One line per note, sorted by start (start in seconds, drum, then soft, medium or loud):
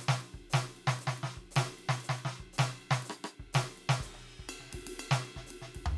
0.01 hi-hat pedal loud
0.01 ride medium
0.09 snare loud
0.19 hi-hat pedal soft
0.19 ride medium
0.34 kick soft
0.51 snare loud
0.51 hi-hat pedal loud
0.51 ride loud
0.72 hi-hat pedal soft
0.77 ride soft
0.88 snare loud
1.00 hi-hat pedal loud
1.00 ride medium
1.08 snare medium
1.18 ride medium
1.24 snare medium
1.38 kick soft
1.52 hi-hat pedal loud
1.57 snare loud
1.57 ride loud
1.64 snare soft
1.74 hi-hat pedal soft
1.79 ride medium
1.89 snare loud
2.01 hi-hat pedal loud
2.01 ride bell medium
2.10 snare medium
2.19 ride medium
2.24 snare medium
2.24 hi-hat pedal soft
2.40 kick soft
2.54 hi-hat pedal loud
2.59 snare loud
2.59 ride bell loud
2.67 snare soft
2.77 hi-hat pedal soft
2.82 ride soft
2.91 snare loud
3.03 hi-hat pedal loud
3.03 ride medium
3.10 cross-stick medium
3.18 ride soft
3.25 cross-stick medium
3.25 hi-hat pedal soft
3.40 kick soft
3.54 snare loud
3.54 hi-hat pedal loud
3.54 ride loud
3.61 snare soft
3.75 hi-hat pedal soft
3.75 ride medium
3.90 snare loud
4.01 kick soft
4.01 hi-hat pedal loud
4.01 crash medium
4.07 kick soft
4.07 cross-stick soft
4.15 high tom soft
4.40 kick soft
4.49 hi-hat pedal loud
4.49 ride bell loud
4.60 snare soft
4.67 snare soft
4.70 snare soft
4.70 ride loud
4.74 kick soft
4.74 snare soft
4.77 snare soft
4.79 kick soft
4.79 snare soft
4.87 ride loud
5.00 hi-hat pedal loud
5.00 ride bell loud
5.12 snare loud
5.26 ride medium
5.37 kick soft
5.37 snare soft
5.47 hi-hat pedal loud
5.47 ride medium
5.62 snare medium
5.75 kick soft
5.75 ride medium
5.86 floor tom loud